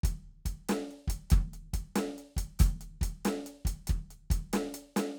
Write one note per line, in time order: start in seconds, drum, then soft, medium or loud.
0.03 kick medium
0.03 closed hi-hat loud
0.46 kick medium
0.46 closed hi-hat loud
0.69 snare loud
0.69 closed hi-hat loud
0.91 closed hi-hat soft
1.08 kick medium
1.08 closed hi-hat loud
1.30 kick loud
1.30 closed hi-hat loud
1.54 closed hi-hat medium
1.74 kick medium
1.74 closed hi-hat loud
1.96 snare loud
1.96 closed hi-hat loud
2.18 closed hi-hat medium
2.37 kick medium
2.37 closed hi-hat loud
2.59 closed hi-hat loud
2.59 kick loud
2.81 closed hi-hat medium
3.01 kick medium
3.01 closed hi-hat loud
3.25 snare loud
3.25 closed hi-hat loud
3.46 closed hi-hat medium
3.65 kick medium
3.65 closed hi-hat loud
3.87 kick medium
3.87 closed hi-hat loud
4.11 closed hi-hat medium
4.30 kick medium
4.30 closed hi-hat loud
4.53 snare loud
4.53 closed hi-hat loud
4.74 closed hi-hat loud
4.96 snare loud
4.96 closed hi-hat loud